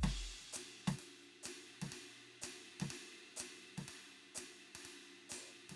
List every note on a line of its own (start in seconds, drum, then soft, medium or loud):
0.01 snare medium
0.01 hi-hat pedal soft
0.01 ride medium
0.41 snare soft
0.53 hi-hat pedal loud
0.53 ride medium
0.88 snare medium
0.88 ride medium
0.99 hi-hat pedal soft
0.99 ride medium
1.21 hi-hat pedal soft
1.43 hi-hat pedal medium
1.43 ride loud
1.82 snare soft
1.82 ride medium
1.87 hi-hat pedal soft
1.92 ride medium
2.42 hi-hat pedal medium
2.42 ride loud
2.80 snare soft
2.80 ride medium
2.91 ride loud
3.37 hi-hat pedal loud
3.37 ride loud
3.78 snare soft
3.78 hi-hat pedal soft
3.78 ride medium
3.88 ride medium
4.35 hi-hat pedal loud
4.35 ride medium
4.75 hi-hat pedal soft
4.75 ride medium
4.85 ride medium
5.30 hi-hat pedal medium
5.30 ride loud
5.70 snare soft
5.70 ride medium